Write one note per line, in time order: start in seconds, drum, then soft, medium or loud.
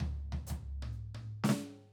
0.01 floor tom medium
0.33 floor tom medium
0.48 floor tom medium
0.48 hi-hat pedal loud
0.83 high tom medium
0.93 hi-hat pedal soft
1.16 high tom medium
1.45 snare medium
1.45 hi-hat pedal medium
1.50 snare loud